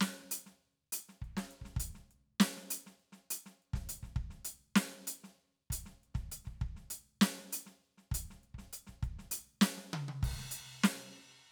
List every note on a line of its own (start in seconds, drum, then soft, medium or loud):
0.01 snare loud
0.20 snare soft
0.31 closed hi-hat loud
0.46 snare soft
0.93 closed hi-hat loud
1.09 snare soft
1.22 kick soft
1.22 closed hi-hat soft
1.37 snare medium
1.51 closed hi-hat soft
1.62 kick soft
1.62 snare soft
1.77 closed hi-hat loud
1.77 kick medium
1.95 snare soft
2.11 closed hi-hat soft
2.40 snare loud
2.57 snare soft
2.71 closed hi-hat loud
2.87 snare soft
3.00 closed hi-hat soft
3.13 snare soft
3.31 closed hi-hat loud
3.46 snare soft
3.62 closed hi-hat soft
3.74 kick medium
3.74 snare soft
3.89 closed hi-hat loud
4.03 kick soft
4.03 snare soft
4.16 kick medium
4.16 closed hi-hat soft
4.31 snare soft
4.45 closed hi-hat loud
4.76 snare loud
4.95 snare soft
5.07 closed hi-hat loud
5.24 snare soft
5.40 closed hi-hat soft
5.70 closed hi-hat loud
5.70 kick soft
5.86 snare soft
6.04 closed hi-hat soft
6.15 kick medium
6.15 snare soft
6.32 closed hi-hat medium
6.45 kick soft
6.45 snare soft
6.61 kick medium
6.61 closed hi-hat soft
6.77 snare soft
6.91 closed hi-hat loud
7.21 snare loud
7.39 snare soft
7.53 closed hi-hat loud
7.67 snare soft
7.98 snare soft
8.12 closed hi-hat loud
8.12 kick medium
8.31 snare soft
8.44 closed hi-hat soft
8.54 kick soft
8.59 snare soft
8.73 closed hi-hat medium
8.87 kick soft
8.87 snare soft
9.03 kick medium
9.03 closed hi-hat soft
9.19 snare soft
9.31 closed hi-hat loud
9.62 snare loud
9.78 snare soft
9.94 high tom loud
10.09 high tom medium
10.23 kick medium
10.23 crash medium
10.39 snare soft
10.51 closed hi-hat loud
10.84 snare loud